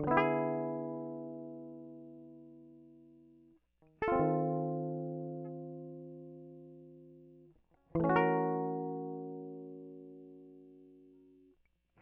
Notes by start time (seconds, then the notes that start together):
0.00 D3
0.05 F3 B3
0.11 E4
0.17 G#4
4.02 A4
4.08 F4
4.12 C4
4.21 D#3
7.96 E3
8.04 A3 C#4
8.10 F#4
8.16 A#4